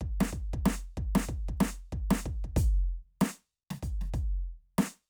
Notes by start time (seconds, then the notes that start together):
0.01 kick
0.21 snare
0.33 kick
0.38 snare
0.54 kick
0.66 snare
0.97 kick
1.15 snare
1.29 kick
1.49 kick
1.57 kick, ride
1.61 snare
1.93 kick
2.11 snare
2.26 kick
2.44 kick
2.57 closed hi-hat, kick
3.21 closed hi-hat, snare
3.71 snare
3.83 closed hi-hat, kick
4.01 snare
4.14 closed hi-hat, kick
4.78 closed hi-hat, snare